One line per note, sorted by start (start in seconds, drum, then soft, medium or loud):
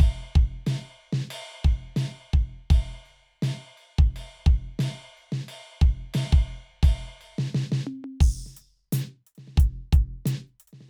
0.01 kick loud
0.01 ride bell loud
0.37 kick loud
0.68 snare loud
0.68 ride bell medium
1.15 snare loud
1.22 snare soft
1.32 ride loud
1.66 kick loud
1.98 snare loud
1.98 ride bell medium
2.35 kick loud
2.72 kick loud
2.72 ride bell medium
3.07 floor tom soft
3.07 ride soft
3.44 snare loud
3.44 ride bell medium
3.79 ride bell soft
4.00 kick loud
4.18 ride bell medium
4.48 kick loud
4.81 snare loud
4.81 ride bell loud
5.19 ride soft
5.34 snare loud
5.50 ride bell medium
5.83 kick loud
5.83 snare soft
6.16 snare loud
6.16 ride bell loud
6.35 kick loud
6.85 kick loud
6.85 ride bell loud
7.23 ride medium
7.40 snare loud
7.57 snare loud
7.57 hi-hat pedal soft
7.74 snare loud
7.89 high tom loud
8.06 high tom loud
8.22 kick loud
8.22 crash loud
8.48 snare soft
8.59 closed hi-hat medium
8.94 open hi-hat loud
8.94 snare loud
8.94 hi-hat pedal soft
9.29 closed hi-hat soft
9.37 snare soft
9.37 closed hi-hat soft
9.50 snare soft
9.58 closed hi-hat medium
9.58 kick loud
9.58 snare soft
9.64 snare soft
9.70 snare soft
9.75 snare soft
9.95 kick loud
9.95 closed hi-hat medium
10.28 closed hi-hat loud
10.28 snare loud
10.48 hi-hat pedal soft
10.62 closed hi-hat medium
10.69 closed hi-hat soft
10.75 snare soft
10.83 snare soft